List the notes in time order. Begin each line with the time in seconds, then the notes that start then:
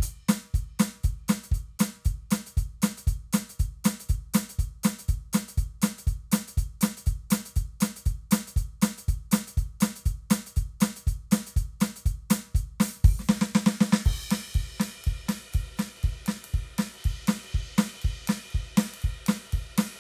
0.01 closed hi-hat, kick
0.30 closed hi-hat, snare
0.55 closed hi-hat, kick
0.80 closed hi-hat, snare
1.05 closed hi-hat, kick
1.29 closed hi-hat, snare
1.45 closed hi-hat
1.53 closed hi-hat, kick
1.81 closed hi-hat, snare
2.06 closed hi-hat, kick
2.32 closed hi-hat, snare
2.48 closed hi-hat
2.58 closed hi-hat, kick
2.83 closed hi-hat, snare
2.99 closed hi-hat
3.08 closed hi-hat, kick
3.34 closed hi-hat, snare
3.51 closed hi-hat
3.61 kick
3.86 closed hi-hat, snare
4.01 closed hi-hat
4.10 closed hi-hat, kick
4.35 closed hi-hat, snare
4.51 closed hi-hat
4.60 closed hi-hat, kick
4.85 closed hi-hat, snare
5.00 closed hi-hat
5.09 closed hi-hat, kick
5.34 closed hi-hat, snare
5.49 closed hi-hat
5.59 closed hi-hat, kick
5.83 closed hi-hat, snare
5.99 closed hi-hat
6.08 closed hi-hat, kick
6.33 closed hi-hat, snare
6.49 closed hi-hat
6.59 closed hi-hat, kick
6.82 closed hi-hat, snare
6.98 closed hi-hat
7.07 closed hi-hat, kick
7.32 closed hi-hat, snare
7.47 closed hi-hat
7.57 closed hi-hat, kick
7.82 closed hi-hat, snare
7.97 closed hi-hat
8.07 closed hi-hat, kick
8.32 closed hi-hat, snare
8.49 closed hi-hat
8.57 closed hi-hat, kick
8.83 closed hi-hat, snare
8.99 closed hi-hat
9.09 closed hi-hat, kick
9.33 closed hi-hat, snare
9.49 closed hi-hat
9.58 closed hi-hat, kick
9.82 closed hi-hat, snare
9.97 closed hi-hat
10.07 closed hi-hat, kick
10.31 closed hi-hat, snare
10.47 closed hi-hat
10.57 closed hi-hat, kick
10.82 closed hi-hat, snare
10.97 closed hi-hat
11.08 closed hi-hat, kick
11.32 closed hi-hat, snare
11.48 closed hi-hat
11.57 closed hi-hat, kick
11.82 closed hi-hat, snare
11.97 closed hi-hat
12.07 kick
12.31 closed hi-hat, snare
12.56 closed hi-hat, kick
12.81 open hi-hat, snare
13.05 open hi-hat, kick
13.21 snare
13.30 snare
13.42 snare
13.56 snare
13.67 snare
13.82 snare
13.94 snare
14.06 kick, hi-hat pedal, crash
14.32 snare, ride
14.56 kick, ride
14.81 snare, ride
15.05 kick, ride
15.30 snare, ride
15.54 kick, hi-hat pedal, ride
15.78 snare, hi-hat pedal, ride
15.97 ride
16.04 kick, ride
16.27 snare, ride
16.46 ride
16.55 kick, ride
16.79 snare, ride
16.95 ride
17.06 kick, ride
17.29 snare, ride
17.45 ride
17.56 kick
17.79 snare, ride
17.95 ride
18.03 kick, ride
18.29 snare, hi-hat pedal, ride
18.45 ride
18.52 hi-hat pedal, ride
18.56 kick
18.79 snare, ride
18.95 ride
19.03 kick, ride
19.28 snare, ride
19.47 ride
19.54 kick, ride
19.79 snare, ride
19.95 ride